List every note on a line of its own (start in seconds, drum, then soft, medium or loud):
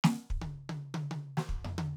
0.04 snare loud
0.30 kick medium
0.41 high tom loud
0.69 high tom loud
0.94 high tom loud
1.11 high tom loud
1.37 snare loud
1.49 kick medium
1.64 floor tom medium
1.78 high tom loud